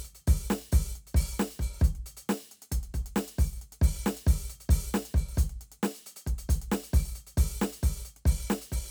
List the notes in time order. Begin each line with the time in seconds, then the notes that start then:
0.01 closed hi-hat, hi-hat pedal
0.15 closed hi-hat
0.27 open hi-hat, kick
0.39 open hi-hat
0.45 hi-hat pedal
0.50 snare
0.62 closed hi-hat
0.72 open hi-hat, kick
0.87 hi-hat pedal, open hi-hat
0.96 closed hi-hat
1.07 closed hi-hat
1.15 open hi-hat, kick
1.29 open hi-hat
1.35 hi-hat pedal
1.40 snare
1.51 closed hi-hat
1.60 open hi-hat, kick
1.75 open hi-hat
1.80 kick, hi-hat pedal
1.84 closed hi-hat
1.95 closed hi-hat
2.06 closed hi-hat
2.17 closed hi-hat
2.29 snare
2.40 closed hi-hat
2.52 closed hi-hat
2.62 closed hi-hat
2.72 kick, closed hi-hat
2.83 closed hi-hat
2.94 closed hi-hat, kick
3.06 closed hi-hat
3.16 snare
3.28 closed hi-hat
3.39 open hi-hat, kick
3.53 hi-hat pedal, open hi-hat
3.62 closed hi-hat
3.73 closed hi-hat
3.82 open hi-hat, kick
3.96 open hi-hat
4.03 snare, hi-hat pedal
4.17 closed hi-hat
4.27 open hi-hat, kick
4.40 open hi-hat
4.46 hi-hat pedal
4.50 closed hi-hat
4.60 closed hi-hat
4.69 open hi-hat, kick
4.83 open hi-hat
4.88 hi-hat pedal
4.94 snare
5.05 closed hi-hat
5.15 open hi-hat, kick
5.29 open hi-hat
5.35 closed hi-hat, kick, hi-hat pedal
5.50 closed hi-hat
5.61 closed hi-hat
5.72 closed hi-hat
5.83 snare
5.95 closed hi-hat
6.06 closed hi-hat
6.27 kick, closed hi-hat
6.39 closed hi-hat
6.49 closed hi-hat, kick
6.62 closed hi-hat
6.72 snare
6.84 closed hi-hat
6.94 open hi-hat, kick
7.06 open hi-hat
7.13 closed hi-hat, hi-hat pedal
7.27 closed hi-hat
7.38 open hi-hat, kick
7.50 open hi-hat
7.58 snare, hi-hat pedal
7.73 closed hi-hat
7.83 open hi-hat, kick
7.96 open hi-hat
8.01 hi-hat pedal
8.05 closed hi-hat
8.17 closed hi-hat
8.26 open hi-hat, kick
8.39 open hi-hat
8.47 snare, hi-hat pedal
8.62 closed hi-hat
8.72 open hi-hat, kick
8.85 open hi-hat